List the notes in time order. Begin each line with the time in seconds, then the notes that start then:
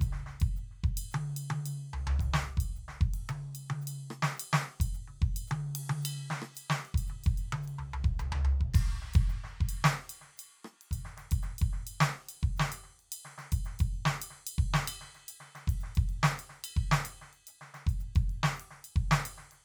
0.01 kick, hi-hat pedal, ride bell
0.13 snare
0.27 snare
0.41 kick, ride bell
0.57 hi-hat pedal
0.72 snare
0.84 kick
0.98 ride bell
1.12 hi-hat pedal, high tom
1.37 ride bell
1.51 high tom
1.66 hi-hat pedal, ride bell
1.94 floor tom
2.07 floor tom
2.20 kick, snare, hi-hat pedal, ride, floor tom
2.34 snare
2.58 kick, ride bell
2.76 hi-hat pedal
2.89 snare
3.01 kick
3.14 ride
3.29 hi-hat pedal, high tom
3.55 ride bell
3.70 high tom
3.82 hi-hat pedal
3.88 ride bell
4.11 cross-stick
4.23 snare
4.37 hi-hat pedal, ride bell
4.54 snare
4.81 kick, ride bell
4.94 hi-hat pedal
5.08 high tom
5.22 kick
5.37 ride bell
5.48 hi-hat pedal, high tom
5.76 ride
5.90 high tom
6.02 hi-hat pedal, ride bell
6.31 snare
6.42 cross-stick
6.55 hi-hat pedal, ride bell
6.70 snare
6.86 ride
6.95 kick, ride bell
7.08 hi-hat pedal, high tom
7.24 kick, ride bell
7.38 ride bell
7.53 high tom
7.63 hi-hat pedal
7.68 ride
7.79 floor tom
7.94 floor tom
8.05 kick
8.20 floor tom, hi-hat pedal
8.33 floor tom
8.45 floor tom
8.61 kick
8.74 kick, hi-hat pedal, ride, crash
9.02 snare
9.14 kick, ride bell
9.30 snare, hi-hat pedal
9.44 snare
9.61 kick
9.69 ride bell
9.85 snare, hi-hat pedal
10.10 ride bell
10.22 snare
10.38 hi-hat pedal, ride bell
10.65 cross-stick
10.82 ride
10.92 kick, hi-hat pedal, ride bell
11.06 snare
11.18 snare, ride
11.32 kick, ride bell
11.43 snare, hi-hat pedal
11.59 kick, ride bell
11.73 snare
11.87 ride bell
12.01 snare, hi-hat pedal
12.29 ride bell
12.43 kick
12.57 snare, hi-hat pedal
12.72 ride bell
12.84 snare
12.94 snare
13.00 ride
13.12 hi-hat pedal, ride bell
13.25 snare
13.38 snare, ride
13.53 kick, ride bell
13.65 snare, hi-hat pedal
13.80 kick, ride bell
13.95 ride
14.06 snare
14.21 hi-hat pedal, ride bell
14.31 snare
14.47 ride bell
14.59 kick
14.74 snare, hi-hat pedal
14.88 ride bell
15.02 snare
15.15 snare, ride
15.28 hi-hat pedal, ride bell
15.41 snare
15.56 snare, ride
15.68 kick, ride
15.81 snare, hi-hat pedal
15.96 kick, ride bell
16.10 ride
16.24 snare
16.38 hi-hat pedal, ride bell
16.50 snare
16.64 ride bell
16.77 kick
16.92 snare, hi-hat pedal
17.06 ride bell
17.22 snare
17.34 snare, ride
17.47 hi-hat pedal, ride bell
17.62 snare
17.74 snare, ride
17.87 kick, ride bell
18.00 hi-hat pedal
18.16 kick, ride bell
18.30 ride
18.44 snare
18.56 hi-hat pedal, ride
18.71 snare
18.85 ride bell
18.96 kick
19.12 snare, hi-hat pedal
19.26 ride bell
19.37 snare, hi-hat pedal
19.52 snare, ride